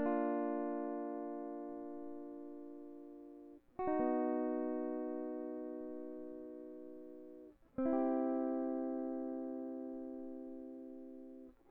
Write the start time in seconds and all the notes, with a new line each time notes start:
0.01 A#3 D4
0.06 F4
3.80 F#4
3.88 D#4
4.01 B3
7.78 C4
7.85 E4
7.94 G4